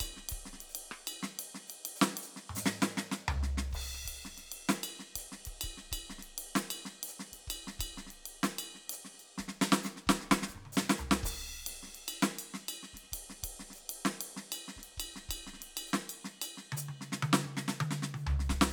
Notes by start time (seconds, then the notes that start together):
0.01 kick, hi-hat pedal, ride bell
0.07 kick
0.17 snare
0.29 kick, ride
0.46 snare
0.54 snare
0.58 snare, ride
0.70 hi-hat pedal
0.76 ride
0.92 cross-stick
1.08 ride bell
1.23 snare
1.40 hi-hat pedal, ride
1.55 snare
1.68 hi-hat pedal, ride
1.86 ride
1.97 hi-hat pedal
2.02 snare
2.18 ride
2.23 hi-hat pedal
2.37 snare
2.50 kick, mid tom
2.56 snare, hi-hat pedal
2.66 snare
2.83 snare
2.98 snare
3.12 snare
3.29 floor tom
3.43 snare
3.58 snare
3.71 kick, hi-hat pedal, crash
3.95 cross-stick
4.06 kick, ride
4.25 snare
4.38 snare, ride
4.52 ride
4.70 snare, hi-hat pedal
4.84 ride bell
5.00 snare
5.16 kick, hi-hat pedal, ride
5.33 snare
5.46 kick, ride
5.62 kick, ride bell
5.78 snare
5.92 kick, ride bell
6.10 snare
6.19 snare
6.23 ride
6.39 ride
6.56 snare, hi-hat pedal
6.71 ride bell
6.86 snare
7.04 ride
7.08 hi-hat pedal
7.20 snare
7.33 kick, ride
7.48 kick, hi-hat pedal, ride bell
7.68 snare
7.80 kick, ride bell
7.98 snare
8.07 snare, ride
8.26 ride
8.44 snare, hi-hat pedal
8.59 ride bell
8.75 snare
8.90 hi-hat pedal, ride
9.05 snare
9.14 snare
9.20 ride bell
9.38 kick, snare
9.49 snare
9.62 snare
9.73 snare
9.84 snare, hi-hat pedal
9.97 snare
10.08 kick, snare
10.21 snare
10.31 kick, snare
10.43 snare
10.49 kick, hi-hat pedal
10.55 mid tom
10.66 high tom
10.73 hi-hat pedal
10.78 snare
10.90 snare
10.98 floor tom, hi-hat pedal
11.12 snare
11.24 kick, hi-hat pedal, crash
11.31 kick
11.36 kick
11.51 cross-stick
11.67 snare, ride
11.83 snare
11.87 snare
11.95 ride
12.09 ride bell
12.23 snare
12.39 ride bell
12.54 snare
12.69 ride bell
12.73 hi-hat pedal
12.83 snare
12.94 kick, snare, ride
13.04 snare
13.13 kick, hi-hat pedal, ride
13.30 snare
13.44 kick, ride
13.60 snare
13.71 snare, ride
13.76 hi-hat pedal
13.90 ride
14.06 snare
14.21 ride
14.37 snare
14.53 hi-hat pedal, ride bell
14.69 snare
14.77 kick, snare
14.84 ride
14.98 kick, hi-hat pedal, ride bell
15.16 snare
15.29 kick, ride bell
15.47 snare
15.54 snare
15.60 snare, ride
15.66 snare
15.78 ride bell
15.88 hi-hat pedal
15.94 snare
16.10 ride bell
16.25 snare
16.42 hi-hat pedal, ride bell
16.58 snare
16.73 high tom
16.77 hi-hat pedal
16.89 high tom
17.02 snare
17.13 snare
17.23 high tom
17.34 snare
17.45 high tom
17.58 snare
17.69 snare
17.81 high tom
17.91 snare
18.03 snare
18.15 hi-hat pedal, open hi-hat, high tom
18.27 floor tom
18.40 snare
18.44 hi-hat pedal
18.50 kick, snare
18.62 snare
18.70 hi-hat pedal